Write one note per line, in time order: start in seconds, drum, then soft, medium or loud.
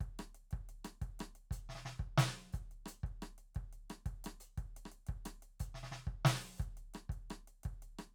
0.01 kick medium
0.01 closed hi-hat soft
0.19 cross-stick medium
0.19 closed hi-hat soft
0.35 closed hi-hat soft
0.51 kick medium
0.51 closed hi-hat soft
0.69 closed hi-hat soft
0.85 cross-stick medium
0.85 closed hi-hat medium
1.02 kick medium
1.02 closed hi-hat soft
1.20 cross-stick medium
1.20 closed hi-hat soft
1.36 closed hi-hat soft
1.51 closed hi-hat medium
1.51 kick medium
1.69 snare soft
1.75 snare soft
1.86 snare medium
2.00 kick medium
2.18 open hi-hat medium
2.18 snare loud
2.53 kick medium
2.53 closed hi-hat soft
2.53 hi-hat pedal soft
2.72 closed hi-hat soft
2.86 closed hi-hat medium
2.86 cross-stick medium
3.04 kick medium
3.04 closed hi-hat soft
3.22 cross-stick medium
3.22 closed hi-hat soft
3.38 closed hi-hat soft
3.55 kick medium
3.55 closed hi-hat soft
3.73 closed hi-hat soft
3.90 cross-stick medium
3.90 closed hi-hat soft
4.06 kick medium
4.06 closed hi-hat soft
4.25 cross-stick medium
4.25 closed hi-hat medium
4.41 closed hi-hat soft
4.58 kick medium
4.58 closed hi-hat soft
4.77 closed hi-hat soft
4.86 cross-stick soft
4.92 closed hi-hat soft
5.07 kick medium
5.07 closed hi-hat soft
5.26 cross-stick medium
5.26 closed hi-hat medium
5.43 closed hi-hat soft
5.60 closed hi-hat medium
5.60 kick medium
5.75 snare soft
5.83 snare soft
5.92 snare medium
6.07 kick medium
6.25 open hi-hat medium
6.25 snare loud
6.58 kick medium
6.58 hi-hat pedal soft
6.62 closed hi-hat soft
6.77 closed hi-hat soft
6.94 cross-stick medium
6.94 closed hi-hat soft
7.10 kick medium
7.10 closed hi-hat soft
7.30 cross-stick medium
7.30 closed hi-hat soft
7.48 closed hi-hat soft
7.64 kick medium
7.64 closed hi-hat soft
7.83 closed hi-hat soft
7.99 cross-stick medium
7.99 closed hi-hat soft